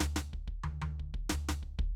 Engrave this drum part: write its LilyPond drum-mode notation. \new DrumStaff \drummode { \time 4/4 \tempo 4 = 122 \tuplet 3/2 { <tomfh sn>8 <sn tomfh>8 bd8 bd8 <tommh tomfh>8 <tommh tomfh>8 bd8 bd8 <sn tomfh>8 <sn tomfh>8 bd8 bd8 } | }